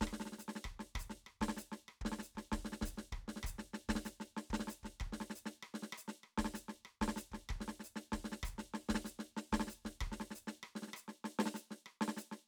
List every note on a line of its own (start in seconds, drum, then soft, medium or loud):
0.01 kick soft
0.01 snare medium
0.07 cross-stick medium
0.13 snare soft
0.20 snare soft
0.26 snare soft
0.32 snare soft
0.39 snare soft
0.39 hi-hat pedal medium
0.48 snare soft
0.55 snare soft
0.64 kick soft
0.64 cross-stick medium
0.79 snare soft
0.95 kick soft
0.95 cross-stick medium
0.99 hi-hat pedal medium
1.10 snare soft
1.26 cross-stick soft
1.41 kick soft
1.41 snare medium
1.48 snare medium
1.57 snare soft
1.57 hi-hat pedal medium
1.72 snare soft
1.88 cross-stick soft
2.01 kick soft
2.01 snare medium
2.12 snare soft
2.19 snare soft
2.19 hi-hat pedal soft
2.35 kick soft
2.35 snare soft
2.52 kick soft
2.52 snare medium
2.58 kick soft
2.65 snare soft
2.72 snare soft
2.81 kick soft
2.81 snare soft
2.85 hi-hat pedal medium
2.98 snare soft
3.12 kick soft
3.12 cross-stick medium
3.28 snare soft
3.36 snare soft
3.43 kick soft
3.43 cross-stick medium
3.43 hi-hat pedal medium
3.58 snare soft
3.74 snare soft
3.89 kick soft
3.89 snare medium
3.95 kick soft
3.95 snare medium
4.05 snare soft
4.05 hi-hat pedal medium
4.20 snare soft
4.37 snare soft
4.50 kick soft
4.50 snare medium
4.60 snare soft
4.67 snare soft
4.67 hi-hat pedal medium
4.83 kick soft
4.83 snare soft
5.00 kick soft
5.00 cross-stick medium
5.12 snare soft
5.20 snare soft
5.30 snare soft
5.35 hi-hat pedal medium
5.46 snare soft
5.63 cross-stick medium
5.74 snare soft
5.82 snare soft
5.93 cross-stick medium
5.98 hi-hat pedal medium
6.08 snare soft
6.23 cross-stick soft
6.38 kick soft
6.38 snare medium
6.45 snare soft
6.54 snare soft
6.54 hi-hat pedal medium
6.68 snare soft
6.85 cross-stick soft
7.01 kick soft
7.01 snare medium
7.08 snare medium
7.16 snare soft
7.16 hi-hat pedal medium
7.32 kick soft
7.32 snare soft
7.49 kick soft
7.49 cross-stick medium
7.61 snare soft
7.68 snare soft
7.80 snare soft
7.84 hi-hat pedal medium
7.96 snare soft
8.12 kick soft
8.12 snare medium
8.24 snare soft
8.32 snare soft
8.43 kick soft
8.43 cross-stick medium
8.43 hi-hat pedal medium
8.58 snare soft
8.74 snare soft
8.89 kick soft
8.89 snare medium
8.95 snare medium
9.05 snare soft
9.05 hi-hat pedal medium
9.19 snare soft
9.37 snare soft
9.52 kick soft
9.52 snare medium
9.60 snare medium
9.67 snare soft
9.67 hi-hat pedal medium
9.85 kick soft
9.85 snare soft
10.01 kick soft
10.01 cross-stick medium
10.12 snare soft
10.20 snare soft
10.31 snare soft
10.35 hi-hat pedal medium
10.47 snare soft
10.63 cross-stick medium
10.75 snare soft
10.82 snare soft
10.88 snare soft
10.93 cross-stick medium
10.93 hi-hat pedal medium
11.08 snare soft
11.24 snare soft
11.39 snare medium
11.46 snare medium
11.54 snare soft
11.54 hi-hat pedal medium
11.71 snare soft
11.86 cross-stick soft
12.01 snare medium
12.08 snare medium
12.17 snare soft
12.17 hi-hat pedal medium
12.32 snare soft